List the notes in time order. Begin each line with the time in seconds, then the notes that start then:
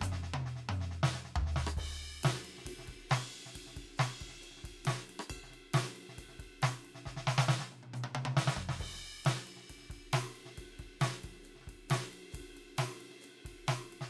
0.01 kick, hi-hat pedal, mid tom
0.12 snare
0.23 snare
0.34 high tom
0.46 snare
0.56 snare
0.69 hi-hat pedal, mid tom
0.81 snare
0.91 snare
1.03 snare, hi-hat pedal
1.15 snare
1.25 snare
1.36 kick, floor tom
1.47 snare
1.52 hi-hat pedal
1.56 kick, snare
1.67 cross-stick
1.74 kick, hi-hat pedal, crash
1.91 kick, snare
1.97 snare
2.17 kick
2.24 snare, hi-hat pedal, ride
2.45 ride
2.58 snare
2.66 kick, hi-hat pedal, ride
2.71 kick
2.79 snare
2.85 kick, snare, ride
3.10 snare, hi-hat pedal, ride
3.34 ride
3.46 snare
3.54 kick, hi-hat pedal, ride
3.67 snare
3.74 kick, snare, ride
3.97 snare, hi-hat pedal, ride
4.21 kick, ride
4.27 kick, snare
4.41 hi-hat pedal, ride
4.51 snare
4.57 snare
4.64 kick, ride
4.70 kick
4.85 snare, hi-hat pedal, ride
5.10 ride
5.19 cross-stick
5.30 kick, hi-hat pedal, ride bell
5.37 kick
5.43 snare
5.51 snare, ride
5.74 snare, hi-hat pedal, ride
5.96 ride
6.09 snare
6.18 kick, hi-hat pedal, ride
6.29 snare
6.36 kick, snare
6.40 ride
6.62 snare, hi-hat pedal, ride
6.85 ride
6.95 snare
7.06 kick, snare, hi-hat pedal
7.12 kick
7.17 snare
7.27 snare
7.38 snare
7.49 snare
7.54 hi-hat pedal
7.60 snare
7.72 high tom
7.83 high tom
7.94 hi-hat pedal, high tom
8.04 high tom
8.15 high tom
8.25 high tom
8.37 snare, hi-hat pedal
8.48 snare
8.57 kick, mid tom
8.63 kick
8.69 snare
8.78 kick, hi-hat pedal, crash
8.87 kick
8.92 cross-stick, snare
9.25 snare, hi-hat pedal, ride
9.47 ride
9.57 snare
9.69 kick, hi-hat pedal, ride
9.78 snare
9.82 snare
9.90 kick, ride
9.96 kick
10.13 snare, hi-hat pedal, ride
10.23 snare
10.36 ride
10.46 snare
10.58 kick, hi-hat pedal, ride
10.63 kick
10.79 kick, ride
10.85 kick
11.00 snare, hi-hat pedal, ride
11.24 kick, ride
11.30 kick
11.34 snare
11.44 hi-hat pedal, ride
11.56 snare
11.61 snare
11.67 kick, ride
11.73 kick
11.89 snare, hi-hat pedal, ride
12.13 ride
12.27 snare
12.32 kick, hi-hat pedal, ride
12.39 kick, snare
12.49 snare
12.57 ride
12.77 snare, hi-hat pedal, ride
12.89 snare
13.01 ride
13.11 snare
13.21 hi-hat pedal, ride
13.29 snare
13.33 snare
13.37 snare
13.40 snare
13.43 kick, snare, ride
13.51 kick
13.67 snare, hi-hat pedal, ride
13.93 ride
14.01 snare